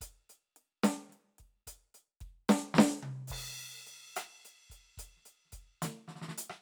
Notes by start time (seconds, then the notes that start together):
0.01 closed hi-hat, kick
0.30 closed hi-hat
0.56 closed hi-hat
0.83 closed hi-hat, snare, hi-hat pedal
1.09 snare, closed hi-hat
1.39 kick, closed hi-hat
1.67 closed hi-hat, kick
1.94 closed hi-hat
2.21 kick, closed hi-hat
2.49 closed hi-hat, snare
2.74 snare
2.78 snare
3.03 high tom
3.28 kick, hi-hat pedal, crash
3.58 closed hi-hat
3.87 closed hi-hat
4.15 closed hi-hat, cross-stick, hi-hat pedal
4.45 closed hi-hat
4.70 closed hi-hat, kick
4.98 closed hi-hat, kick
5.17 snare
5.26 closed hi-hat
5.45 snare
5.51 closed hi-hat, kick, snare
5.82 closed hi-hat, snare
6.08 snare
6.16 snare
6.22 snare
6.28 snare
6.38 closed hi-hat
6.50 cross-stick